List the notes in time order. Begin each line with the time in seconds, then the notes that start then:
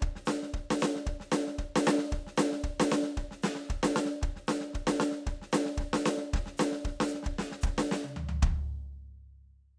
0.01 kick, snare
0.15 snare
0.26 snare, hi-hat pedal
0.42 snare
0.54 kick, snare
0.71 snare
0.79 snare, hi-hat pedal
0.96 snare
1.06 kick, snare
1.20 snare
1.32 snare, hi-hat pedal
1.47 snare
1.59 kick, snare
1.76 snare
1.84 snare, hi-hat pedal
1.98 snare
2.12 kick, snare
2.27 snare
2.37 snare, hi-hat pedal
2.52 snare
2.64 kick, snare
2.80 snare
2.89 snare, hi-hat pedal
3.03 snare
3.17 kick, snare
3.31 snare
3.43 snare, hi-hat pedal
3.55 snare
3.69 kick, snare
3.83 snare
3.95 snare, hi-hat pedal
4.05 snare
4.22 kick, snare
4.36 snare
4.47 snare, hi-hat pedal
4.60 snare
4.73 kick, snare
4.87 snare
5.00 snare, hi-hat pedal
5.12 snare
5.27 kick, snare
5.42 snare
5.52 snare, hi-hat pedal
5.66 snare
5.78 kick, snare
5.93 snare
6.05 snare, hi-hat pedal
6.17 snare
6.34 kick, snare
6.46 snare
6.57 snare, hi-hat pedal
6.72 snare
6.85 kick, snare
7.00 snare
7.08 hi-hat pedal
7.14 snare
7.23 kick, snare
7.39 snare
7.52 snare
7.61 kick, hi-hat pedal
7.66 snare
7.78 snare
7.91 snare
8.04 high tom
8.16 floor tom
8.29 floor tom
8.43 kick, floor tom